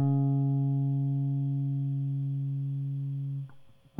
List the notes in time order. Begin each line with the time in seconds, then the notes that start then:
0.00 C#3